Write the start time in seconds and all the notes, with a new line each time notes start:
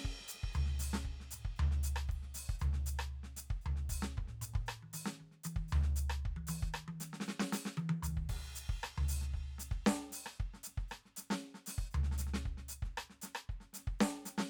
0.01 hi-hat pedal
0.05 kick
0.20 snare
0.28 hi-hat pedal
0.34 snare
0.44 kick
0.53 floor tom, hi-hat pedal
0.66 snare
0.80 snare, hi-hat pedal
0.93 snare
1.05 kick
1.20 snare
1.31 hi-hat pedal, mid tom
1.45 kick
1.56 floor tom, hi-hat pedal
1.71 snare
1.83 hi-hat pedal, ride
1.96 cross-stick
2.08 kick, hi-hat pedal, ride
2.23 snare
2.34 snare, hi-hat pedal
2.49 kick
2.59 floor tom, hi-hat pedal
2.73 snare
2.86 hi-hat pedal
2.99 cross-stick
3.23 snare
3.37 snare, hi-hat pedal
3.50 kick
3.62 hi-hat pedal
3.66 floor tom
3.76 snare
3.90 kick, hi-hat pedal
4.02 snare
4.17 kick, mid tom
4.28 snare
4.42 hi-hat pedal, mid tom
4.54 kick, mid tom
4.66 cross-stick, hi-hat pedal
4.83 high tom
4.93 hi-hat pedal, high tom
5.06 snare
5.20 kick, high tom
5.32 snare
5.44 hi-hat pedal, high tom
5.56 kick
5.68 hi-hat pedal
5.73 floor tom
5.83 snare
5.96 kick, hi-hat pedal
6.10 cross-stick
6.25 kick
6.37 high tom
6.47 hi-hat pedal, high tom
6.63 kick
6.73 cross-stick, hi-hat pedal
6.88 high tom
7.00 snare, hi-hat pedal
7.13 snare
7.20 snare
7.26 snare, hi-hat pedal
7.40 snare
7.53 snare, hi-hat pedal
7.65 snare
7.76 hi-hat pedal, high tom
7.90 high tom
8.03 floor tom, hi-hat pedal
8.17 kick
8.29 kick, hi-hat pedal, crash
8.55 hi-hat pedal
8.69 kick
8.83 cross-stick
8.98 floor tom
9.09 snare, hi-hat pedal
9.21 snare
9.34 kick, snare
9.59 snare, hi-hat pedal
9.71 kick, snare
9.85 snare, hi-hat pedal
10.00 snare
10.12 snare, hi-hat pedal
10.26 cross-stick
10.39 kick, snare
10.54 snare
10.63 snare, hi-hat pedal
10.78 kick, snare
10.88 cross-stick, hi-hat pedal
11.06 snare
11.17 snare, hi-hat pedal
11.30 snare
11.41 snare, hi-hat pedal
11.55 snare
11.66 snare, hi-hat pedal
11.78 kick
11.91 floor tom, hi-hat pedal
12.04 snare
12.12 snare
12.18 snare, hi-hat pedal
12.27 snare
12.34 snare
12.46 kick, snare
12.58 snare
12.69 snare, hi-hat pedal
12.83 kick, snare
12.98 cross-stick
13.10 snare
13.22 snare, hi-hat pedal
13.35 cross-stick
13.49 kick, snare
13.60 snare
13.73 snare, hi-hat pedal
13.76 snare
13.87 kick
13.99 snare, hi-hat pedal
14.14 snare
14.26 snare, hi-hat pedal
14.38 snare